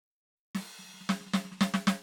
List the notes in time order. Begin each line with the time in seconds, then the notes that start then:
0.55 snare, crash
0.79 snare
0.84 snare
0.89 snare
0.94 snare
1.00 snare
1.09 snare
1.20 snare
1.26 snare
1.33 snare
1.44 snare
1.51 snare
1.58 snare
1.61 snare
1.74 snare
1.87 snare